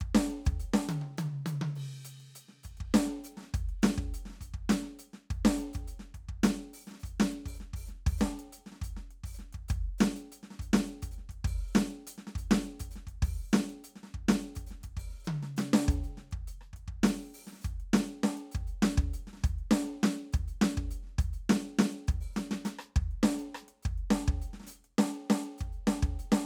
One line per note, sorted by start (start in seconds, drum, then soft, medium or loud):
0.01 kick medium
0.01 closed hi-hat soft
0.15 snare loud
0.31 closed hi-hat soft
0.46 closed hi-hat soft
0.46 kick loud
0.60 closed hi-hat soft
0.74 snare loud
0.89 hi-hat pedal medium
0.89 high tom loud
1.02 high tom medium
1.18 hi-hat pedal medium
1.18 high tom loud
1.46 hi-hat pedal medium
1.46 high tom loud
1.62 high tom loud
1.76 crash medium
2.05 closed hi-hat medium
2.21 closed hi-hat soft
2.36 closed hi-hat medium
2.49 snare soft
2.64 closed hi-hat medium
2.64 kick soft
2.78 kick medium
2.78 closed hi-hat soft
2.95 closed hi-hat medium
2.95 snare loud
3.07 snare soft
3.25 open hi-hat medium
3.25 hi-hat pedal medium
3.38 snare soft
3.41 snare soft
3.43 snare soft
3.54 closed hi-hat soft
3.54 kick medium
3.69 closed hi-hat soft
3.83 closed hi-hat medium
3.83 snare loud
3.98 kick medium
4.14 closed hi-hat medium
4.26 snare soft
4.30 snare soft
4.34 snare soft
4.36 snare soft
4.41 closed hi-hat soft
4.41 kick soft
4.54 kick medium
4.54 closed hi-hat soft
4.70 closed hi-hat medium
4.70 snare loud
4.84 snare soft
4.86 snare soft
4.99 closed hi-hat medium
5.14 snare soft
5.31 closed hi-hat soft
5.31 kick medium
5.45 snare loud
5.58 closed hi-hat soft
5.74 closed hi-hat soft
5.74 kick medium
5.88 closed hi-hat medium
6.00 snare soft
6.15 kick soft
6.15 closed hi-hat soft
6.29 kick medium
6.44 open hi-hat medium
6.44 snare loud
6.58 snare soft
6.74 open hi-hat medium
6.88 snare soft
6.92 snare soft
6.94 snare soft
7.00 kick medium
7.00 snare soft
7.00 hi-hat pedal soft
7.06 closed hi-hat soft
7.20 snare loud
7.32 closed hi-hat soft
7.46 open hi-hat medium
7.46 kick medium
7.55 hi-hat pedal soft
7.61 snare soft
7.74 open hi-hat medium
7.74 kick medium
7.87 snare soft
7.87 hi-hat pedal soft
7.95 snare soft
8.07 open hi-hat medium
8.07 kick loud
8.19 snare medium
8.19 hi-hat pedal medium
8.39 closed hi-hat medium
8.53 closed hi-hat medium
8.67 snare soft
8.72 snare soft
8.76 snare soft
8.82 closed hi-hat medium
8.82 kick medium
8.97 snare soft
9.11 closed hi-hat soft
9.24 open hi-hat medium
9.24 kick medium
9.35 hi-hat pedal soft
9.39 snare soft
9.53 kick soft
9.53 closed hi-hat soft
9.69 closed hi-hat medium
9.69 kick loud
9.99 snare loud
9.99 hi-hat pedal medium
10.16 closed hi-hat soft
10.16 snare soft
10.32 closed hi-hat medium
10.44 snare soft
10.51 snare soft
10.54 snare soft
10.60 closed hi-hat soft
10.60 kick medium
10.74 snare loud
10.88 closed hi-hat soft
11.00 open hi-hat medium
11.00 kick medium
11.00 snare soft
11.12 hi-hat pedal soft
11.19 snare soft
11.30 kick soft
11.30 closed hi-hat soft
11.45 open hi-hat medium
11.45 kick loud
11.75 snare loud
11.75 hi-hat pedal soft
11.91 closed hi-hat soft
12.07 closed hi-hat medium
12.18 snare soft
12.27 snare soft
12.36 closed hi-hat medium
12.36 kick medium
12.51 snare loud
12.66 closed hi-hat soft
12.80 open hi-hat medium
12.80 kick medium
12.91 hi-hat pedal soft
12.96 snare soft
13.07 kick soft
13.07 closed hi-hat soft
13.23 open hi-hat medium
13.23 kick loud
13.53 snare loud
13.53 hi-hat pedal soft
13.70 closed hi-hat soft
13.84 closed hi-hat medium
13.96 snare soft
14.04 snare soft
14.07 snare soft
14.15 kick medium
14.15 closed hi-hat soft
14.29 snare loud
14.43 closed hi-hat soft
14.56 open hi-hat medium
14.56 kick medium
14.67 hi-hat pedal soft
14.71 snare soft
14.81 kick soft
14.81 snare soft
14.81 closed hi-hat medium
14.97 open hi-hat medium
14.97 kick medium
15.10 snare soft
15.13 snare soft
15.25 hi-hat pedal soft
15.25 high tom loud
15.43 snare soft
15.57 snare medium
15.57 hi-hat pedal medium
15.74 snare loud
15.89 closed hi-hat medium
15.89 kick loud
16.04 closed hi-hat soft
16.18 snare soft
16.32 kick medium
16.32 closed hi-hat soft
16.48 closed hi-hat soft
16.62 cross-stick soft
16.74 kick soft
16.74 closed hi-hat soft
16.88 kick medium
17.04 open hi-hat medium
17.04 snare loud
17.34 open hi-hat medium
17.47 snare soft
17.53 snare soft
17.57 snare soft
17.60 snare soft
17.60 hi-hat pedal soft
17.64 closed hi-hat soft
17.64 kick medium
17.64 snare soft
17.80 closed hi-hat soft
17.94 snare loud
18.01 snare soft
18.08 closed hi-hat soft
18.24 snare medium
18.32 snare soft
18.37 snare soft
18.37 closed hi-hat soft
18.52 closed hi-hat medium
18.52 kick medium
18.68 closed hi-hat soft
18.83 snare loud
18.96 kick loud
18.96 snare soft
18.96 closed hi-hat soft
19.14 closed hi-hat medium
19.28 snare soft
19.34 snare soft
19.38 snare soft
19.42 closed hi-hat soft
19.42 kick loud
19.42 snare soft
19.59 closed hi-hat soft
19.71 snare loud
19.87 closed hi-hat soft
20.04 snare loud
20.12 snare soft
20.18 closed hi-hat soft
20.33 closed hi-hat soft
20.33 kick loud
20.48 closed hi-hat soft
20.62 snare loud
20.77 kick medium
20.77 closed hi-hat soft
20.91 closed hi-hat medium
21.03 snare soft
21.06 snare soft
21.19 closed hi-hat soft
21.19 kick loud
21.34 closed hi-hat soft
21.50 snare loud
21.66 closed hi-hat soft
21.79 snare loud
21.93 closed hi-hat soft
22.08 closed hi-hat soft
22.08 kick loud
22.21 open hi-hat soft
22.37 snare medium
22.37 hi-hat pedal soft
22.51 snare medium
22.66 snare medium
22.66 hi-hat pedal medium
22.79 cross-stick medium
22.96 kick loud
22.96 closed hi-hat soft
23.12 closed hi-hat soft
23.24 snare loud
23.32 snare soft
23.39 closed hi-hat soft
23.55 cross-stick medium
23.63 snare soft
23.69 closed hi-hat soft
23.83 closed hi-hat soft
23.83 kick medium
23.98 closed hi-hat soft
24.11 snare loud
24.27 kick loud
24.27 closed hi-hat soft
24.42 closed hi-hat soft
24.54 snare soft
24.60 snare soft
24.64 snare soft
24.67 snare soft
24.67 hi-hat pedal medium
24.71 closed hi-hat medium
24.85 closed hi-hat soft
24.99 snare loud
25.06 snare soft
25.15 closed hi-hat soft
25.31 snare loud
25.44 snare soft
25.44 closed hi-hat soft
25.58 closed hi-hat soft
25.58 kick medium
25.73 closed hi-hat soft
25.88 snare loud
26.03 kick loud
26.03 closed hi-hat soft
26.20 closed hi-hat soft
26.32 snare loud